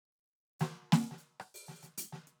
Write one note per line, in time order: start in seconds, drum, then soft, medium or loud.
0.60 snare loud
0.60 hi-hat pedal medium
0.93 snare loud
1.12 snare soft
1.19 hi-hat pedal soft
1.41 cross-stick medium
1.55 open hi-hat medium
1.69 snare soft
1.84 snare soft
1.84 hi-hat pedal medium
1.99 closed hi-hat loud
2.13 snare medium
2.28 closed hi-hat soft